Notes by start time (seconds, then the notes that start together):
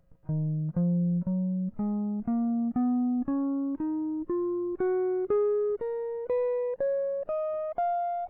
0.31 D#3
0.78 F3
1.28 F#3
1.80 G#3
2.29 A#3
2.77 B3
3.29 C#4
3.81 D#4
4.30 F4
4.81 F#4
5.31 G#4
5.82 A#4
6.30 B4
6.81 C#5
7.29 D#5
7.79 F5